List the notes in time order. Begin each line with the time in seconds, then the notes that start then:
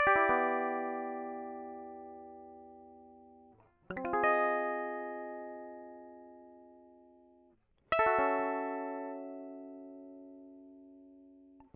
0.00 D5
0.07 G4
0.16 E4
0.30 B3
3.91 F#3
3.98 C4 A4
4.05 F4 B4
4.14 G#4
4.24 D#5
7.93 E5
8.00 A4
8.07 F#4
8.19 C#4